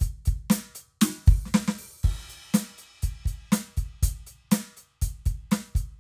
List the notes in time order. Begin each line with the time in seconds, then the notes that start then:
0.01 closed hi-hat, kick, hi-hat pedal
0.27 closed hi-hat, kick
0.51 closed hi-hat, snare
0.76 closed hi-hat
1.02 closed hi-hat, snare
1.27 open hi-hat, kick
1.47 snare
1.55 snare
1.69 snare
1.79 open hi-hat
2.03 kick, hi-hat pedal, crash
2.31 closed hi-hat
2.55 closed hi-hat, snare
2.79 closed hi-hat
3.04 closed hi-hat, kick
3.27 closed hi-hat, kick
3.53 closed hi-hat, snare
3.78 closed hi-hat, kick
4.04 closed hi-hat, kick
4.28 closed hi-hat
4.53 closed hi-hat, snare
4.78 closed hi-hat
5.03 closed hi-hat, kick
5.27 closed hi-hat, kick
5.52 closed hi-hat, snare
5.76 open hi-hat, kick